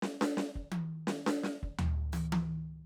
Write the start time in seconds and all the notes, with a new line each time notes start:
0.02 snare
0.21 snare
0.37 snare
0.56 kick
0.72 high tom
1.07 snare
1.26 snare
1.43 snare
1.63 kick
1.79 floor tom
2.12 hi-hat pedal, high tom
2.32 high tom